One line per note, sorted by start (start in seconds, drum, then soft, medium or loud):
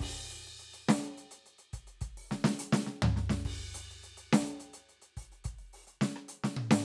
0.01 kick soft
0.01 crash loud
0.09 kick soft
0.18 closed hi-hat soft
0.31 closed hi-hat medium
0.48 closed hi-hat soft
0.60 closed hi-hat medium
0.74 closed hi-hat medium
0.89 snare loud
1.04 closed hi-hat medium
1.18 closed hi-hat medium
1.32 closed hi-hat medium
1.46 closed hi-hat soft
1.59 closed hi-hat medium
1.74 closed hi-hat medium
1.74 kick soft
1.88 closed hi-hat soft
2.02 closed hi-hat medium
2.02 kick soft
2.18 open hi-hat medium
2.32 snare medium
2.45 snare loud
2.60 closed hi-hat loud
2.73 snare loud
2.87 snare medium
3.03 floor tom loud
3.17 snare medium
3.30 snare medium
3.40 hi-hat pedal soft
3.46 kick soft
3.46 crash medium
3.55 kick soft
3.75 closed hi-hat loud
3.91 closed hi-hat soft
4.04 closed hi-hat medium
4.18 closed hi-hat medium
4.33 snare loud
4.47 closed hi-hat medium
4.60 closed hi-hat medium
4.74 closed hi-hat medium
4.89 closed hi-hat soft
5.02 closed hi-hat medium
5.17 open hi-hat medium
5.17 kick soft
5.32 open hi-hat soft
5.45 closed hi-hat medium
5.45 kick soft
5.52 kick soft
5.54 kick soft
5.59 open hi-hat soft
5.74 open hi-hat medium
5.87 open hi-hat medium
6.02 snare loud
6.17 cross-stick medium
6.29 closed hi-hat medium
6.44 snare medium
6.57 high tom loud
6.71 snare loud